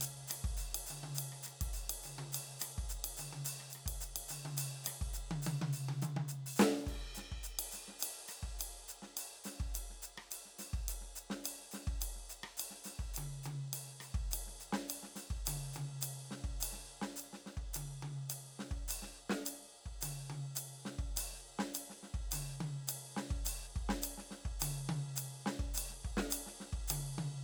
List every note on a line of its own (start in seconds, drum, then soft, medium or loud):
0.01 hi-hat pedal loud
0.01 ride loud
0.27 cross-stick medium
0.27 hi-hat pedal medium
0.27 ride loud
0.44 kick soft
0.57 hi-hat pedal medium
0.75 ride loud
0.86 hi-hat pedal medium
0.86 high tom soft
1.03 high tom medium
1.15 hi-hat pedal medium
1.15 ride loud
1.32 cross-stick soft
1.43 cross-stick soft
1.43 hi-hat pedal medium
1.48 ride soft
1.61 kick soft
1.61 ride medium
1.73 hi-hat pedal medium
1.90 ride loud
2.03 hi-hat pedal medium
2.03 high tom soft
2.18 high tom medium
2.32 hi-hat pedal medium
2.32 ride loud
2.59 cross-stick medium
2.59 hi-hat pedal medium
2.59 ride loud
2.78 kick soft
2.89 hi-hat pedal medium
3.04 ride loud
3.17 hi-hat pedal medium
3.17 high tom soft
3.33 high tom medium
3.45 hi-hat pedal loud
3.45 ride medium
3.60 cross-stick soft
3.70 hi-hat pedal medium
3.70 ride medium
3.75 cross-stick soft
3.86 kick soft
3.86 ride medium
4.01 hi-hat pedal medium
4.16 ride loud
4.28 hi-hat pedal medium
4.28 high tom soft
4.45 high tom medium
4.57 hi-hat pedal loud
4.57 ride loud
4.84 cross-stick medium
4.84 hi-hat pedal medium
4.84 ride loud
5.01 kick soft
5.13 hi-hat pedal medium
5.31 high tom medium
5.42 hi-hat pedal medium
5.46 high tom medium
5.62 high tom medium
5.73 hi-hat pedal medium
5.89 high tom medium
6.02 hi-hat pedal medium
6.02 high tom medium
6.16 high tom medium
6.28 hi-hat pedal medium
6.46 open hi-hat medium
6.56 snare loud
6.56 hi-hat pedal medium
6.86 kick soft
6.86 ride medium
7.15 snare soft
7.15 hi-hat pedal medium
7.31 kick soft
7.43 hi-hat pedal medium
7.59 ride loud
7.71 snare soft
7.71 hi-hat pedal medium
7.88 snare soft
7.99 hi-hat pedal medium
7.99 ride loud
8.28 cross-stick soft
8.28 hi-hat pedal medium
8.42 kick soft
8.42 snare soft
8.59 hi-hat pedal medium
8.59 ride loud
8.88 hi-hat pedal medium
9.02 snare soft
9.17 hi-hat pedal medium
9.17 ride loud
9.44 snare soft
9.44 hi-hat pedal medium
9.60 kick soft
9.74 hi-hat pedal medium
9.74 ride medium
9.90 snare soft
10.02 hi-hat pedal medium
10.18 cross-stick medium
10.31 hi-hat pedal medium
10.31 ride medium
10.45 snare soft
10.59 snare soft
10.59 hi-hat pedal medium
10.73 kick soft
10.88 hi-hat pedal medium
10.88 ride medium
11.01 snare soft
11.15 hi-hat pedal medium
11.30 snare medium
11.44 hi-hat pedal medium
11.44 ride loud
11.71 snare soft
11.71 hi-hat pedal medium
11.87 kick soft
12.01 hi-hat pedal medium
12.01 ride loud
12.15 snare soft
12.29 hi-hat pedal medium
12.43 cross-stick medium
12.57 hi-hat pedal medium
12.57 ride loud
12.70 snare soft
12.84 snare soft
12.84 hi-hat pedal medium
12.99 kick soft
13.14 hi-hat pedal medium
13.14 ride medium
13.18 high tom medium
13.43 hi-hat pedal medium
13.43 high tom medium
13.73 hi-hat pedal medium
13.73 ride loud
14.00 cross-stick medium
14.00 hi-hat pedal soft
14.14 kick soft
14.31 hi-hat pedal medium
14.31 ride loud
14.47 snare soft
14.60 hi-hat pedal medium
14.72 snare medium
14.88 hi-hat pedal medium
14.88 ride loud
15.03 snare soft
15.15 snare soft
15.15 hi-hat pedal medium
15.30 kick soft
15.45 hi-hat pedal medium
15.45 high tom medium
15.45 ride loud
15.73 hi-hat pedal medium
15.73 high tom medium
16.01 hi-hat pedal medium
16.01 ride loud
16.31 snare soft
16.44 kick soft
16.60 hi-hat pedal medium
16.60 ride loud
16.72 snare soft
17.02 snare medium
17.16 hi-hat pedal medium
17.16 ride medium
17.33 snare soft
17.46 snare soft
17.57 kick soft
17.73 hi-hat pedal medium
17.73 high tom medium
17.73 ride medium
18.02 high tom medium
18.29 hi-hat pedal medium
18.29 ride loud
18.59 snare soft
18.71 kick soft
18.88 hi-hat pedal loud
18.88 ride medium
19.02 snare soft
19.30 snare medium
19.45 hi-hat pedal medium
19.45 ride loud
19.85 kick soft
20.01 hi-hat pedal medium
20.01 high tom medium
20.01 ride loud
20.30 high tom medium
20.55 hi-hat pedal medium
20.55 ride loud
20.85 snare soft
20.98 kick soft
21.16 hi-hat pedal loud
21.16 ride loud
21.32 snare soft
21.59 snare medium
21.74 hi-hat pedal medium
21.74 ride loud
21.90 snare soft
22.03 snare soft
22.14 kick soft
22.31 hi-hat pedal medium
22.31 high tom medium
22.31 ride loud
22.60 high tom medium
22.87 hi-hat pedal medium
22.87 ride loud
23.17 snare medium
23.30 kick soft
23.45 hi-hat pedal medium
23.45 ride loud
23.76 kick soft
23.89 snare medium
24.02 hi-hat pedal medium
24.02 ride loud
24.17 snare soft
24.31 snare soft
24.45 kick soft
24.60 hi-hat pedal medium
24.60 high tom medium
24.60 ride loud
24.89 high tom medium
25.16 hi-hat pedal medium
25.16 ride loud
25.46 snare medium
25.59 kick soft
25.74 hi-hat pedal medium
25.74 ride loud
25.89 snare soft
26.04 kick soft
26.17 snare medium
26.30 hi-hat pedal loud
26.30 ride loud
26.46 snare soft
26.60 snare soft
26.72 kick soft
26.88 hi-hat pedal medium
26.88 high tom medium
26.88 ride loud
27.18 high tom medium